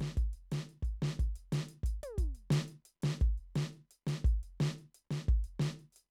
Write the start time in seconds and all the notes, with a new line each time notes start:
0.01 snare, closed hi-hat
0.18 kick, closed hi-hat
0.34 closed hi-hat
0.52 snare, closed hi-hat
0.69 closed hi-hat
0.83 kick, closed hi-hat
1.03 snare
1.20 kick, closed hi-hat
1.36 closed hi-hat
1.53 snare, closed hi-hat
1.69 closed hi-hat
1.84 kick, closed hi-hat
2.03 closed hi-hat, high tom
2.18 kick, closed hi-hat
2.35 closed hi-hat
2.51 snare, closed hi-hat
2.68 closed hi-hat
2.86 closed hi-hat
3.03 snare, closed hi-hat
3.21 kick, closed hi-hat
3.38 closed hi-hat
3.56 snare, closed hi-hat
3.73 closed hi-hat
3.91 closed hi-hat
4.07 snare, closed hi-hat
4.25 kick, closed hi-hat
4.44 closed hi-hat
4.61 snare, closed hi-hat
4.79 closed hi-hat
4.95 closed hi-hat
5.11 snare, closed hi-hat
5.29 kick, closed hi-hat
5.45 closed hi-hat
5.60 snare, closed hi-hat
5.80 closed hi-hat
5.93 closed hi-hat, hi-hat pedal